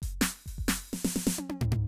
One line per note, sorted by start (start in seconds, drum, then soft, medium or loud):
0.02 open hi-hat medium
0.02 kick soft
0.21 open hi-hat medium
0.21 snare loud
0.46 open hi-hat medium
0.46 kick soft
0.58 kick soft
0.68 open hi-hat loud
0.68 snare loud
0.93 snare medium
1.04 snare loud
1.16 snare medium
1.27 snare loud
1.38 high tom loud
1.50 high tom loud
1.61 floor tom loud
1.72 floor tom loud